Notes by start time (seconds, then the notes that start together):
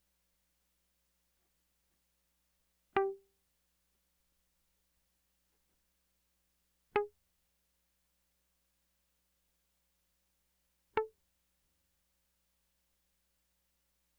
2.97 G4
6.96 G#4
10.97 A4